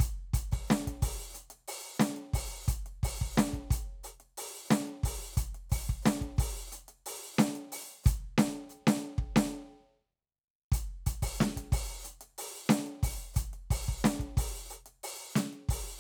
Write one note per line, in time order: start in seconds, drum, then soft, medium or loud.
0.01 closed hi-hat loud
0.01 kick medium
0.34 open hi-hat loud
0.34 kick medium
0.52 open hi-hat medium
0.52 kick medium
0.68 snare loud
0.68 hi-hat pedal medium
0.88 kick soft
0.88 closed hi-hat medium
1.03 open hi-hat loud
1.03 kick medium
1.34 closed hi-hat medium
1.34 hi-hat pedal medium
1.51 closed hi-hat medium
1.68 open hi-hat loud
1.97 closed hi-hat loud
1.97 snare loud
1.97 hi-hat pedal medium
2.17 closed hi-hat soft
2.34 open hi-hat loud
2.34 kick medium
2.66 closed hi-hat loud
2.66 kick medium
2.66 hi-hat pedal medium
2.87 closed hi-hat soft
3.04 open hi-hat loud
3.04 kick medium
3.22 kick medium
3.36 closed hi-hat loud
3.36 snare loud
3.36 hi-hat pedal medium
3.54 kick soft
3.54 closed hi-hat soft
3.71 open hi-hat loud
3.71 kick medium
4.04 open hi-hat medium
4.04 hi-hat pedal medium
4.21 closed hi-hat soft
4.38 open hi-hat loud
4.68 closed hi-hat loud
4.68 snare loud
4.68 hi-hat pedal medium
4.88 closed hi-hat soft
5.04 open hi-hat loud
5.04 kick medium
5.35 closed hi-hat loud
5.35 kick medium
5.35 hi-hat pedal medium
5.55 closed hi-hat soft
5.70 open hi-hat loud
5.70 kick medium
5.70 hi-hat pedal soft
5.90 kick medium
6.03 closed hi-hat medium
6.03 snare loud
6.03 hi-hat pedal medium
6.22 kick soft
6.22 closed hi-hat soft
6.37 open hi-hat loud
6.37 kick medium
6.37 hi-hat pedal soft
6.72 closed hi-hat loud
6.72 hi-hat pedal medium
6.89 closed hi-hat medium
7.07 open hi-hat loud
7.37 closed hi-hat medium
7.37 snare loud
7.37 hi-hat pedal medium
7.56 closed hi-hat medium
7.73 open hi-hat loud
8.04 closed hi-hat loud
8.04 kick loud
8.04 hi-hat pedal medium
8.39 snare loud
8.70 hi-hat pedal medium
8.88 snare loud
9.19 kick medium
9.37 snare loud
10.73 closed hi-hat loud
10.73 kick medium
11.07 closed hi-hat loud
11.07 kick medium
11.23 open hi-hat loud
11.23 kick medium
11.39 snare loud
11.39 hi-hat pedal medium
11.57 kick soft
11.57 closed hi-hat medium
11.73 open hi-hat loud
11.73 kick medium
12.04 closed hi-hat loud
12.04 hi-hat pedal medium
12.22 closed hi-hat medium
12.39 open hi-hat loud
12.67 closed hi-hat loud
12.67 snare loud
12.67 hi-hat pedal soft
12.87 closed hi-hat soft
13.03 open hi-hat loud
13.03 kick medium
13.03 hi-hat pedal soft
13.34 closed hi-hat loud
13.34 kick medium
13.34 hi-hat pedal medium
13.54 closed hi-hat soft
13.71 open hi-hat loud
13.71 kick medium
13.89 kick medium
14.02 closed hi-hat loud
14.02 snare loud
14.02 hi-hat pedal medium
14.20 kick soft
14.20 closed hi-hat soft
14.38 open hi-hat loud
14.38 kick medium
14.71 open hi-hat medium
14.71 hi-hat pedal soft
14.87 closed hi-hat medium
15.04 open hi-hat loud
15.34 closed hi-hat loud
15.34 snare loud
15.34 hi-hat pedal medium
15.53 closed hi-hat soft
15.69 open hi-hat loud
15.69 kick medium